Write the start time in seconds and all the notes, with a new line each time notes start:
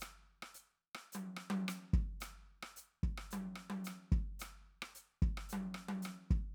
0.01 cross-stick, hi-hat pedal
0.43 cross-stick
0.55 hi-hat pedal
0.95 cross-stick
1.13 hi-hat pedal, high tom
1.37 cross-stick
1.51 high tom
1.69 cross-stick, hi-hat pedal
1.94 kick
2.21 cross-stick, hi-hat pedal
2.63 cross-stick
2.77 hi-hat pedal
3.04 kick
3.18 cross-stick
3.31 hi-hat pedal, high tom
3.56 cross-stick
3.70 high tom
3.85 cross-stick, hi-hat pedal
4.12 kick
4.40 cross-stick, hi-hat pedal
4.83 cross-stick
4.95 hi-hat pedal
5.23 kick
5.38 cross-stick
5.50 hi-hat pedal, high tom
5.75 cross-stick
5.89 high tom
6.03 cross-stick, hi-hat pedal
6.31 kick